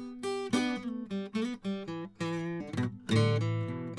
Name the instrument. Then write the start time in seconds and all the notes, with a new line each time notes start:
acoustic guitar
0.24 G4
0.53 B3 D4 G4
0.84 A3
1.11 G3
1.35 B3
1.65 G3
1.89 E3
2.21 E3
2.61 D3
2.74 B2 D#3
2.84 F2
3.10 E2 A2
3.16 D3
3.42 E3
3.69 B2